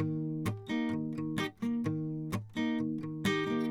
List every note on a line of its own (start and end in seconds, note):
0.01 0.55 D#3
0.50 1.01 G4
0.71 1.38 A#3
0.71 1.38 D#4
0.95 1.19 D#3
1.20 1.50 D#3
1.39 1.55 D#4
1.39 1.54 G4
1.64 1.85 D#3
1.64 1.88 A#3
1.87 2.40 D#3
2.58 3.01 A#3
2.58 2.84 D#4
2.80 3.05 D#3
3.05 3.49 D#3
3.26 3.45 D#4
3.26 3.71 G4
3.45 3.71 D#4
3.50 3.71 D#3
3.50 3.71 A#3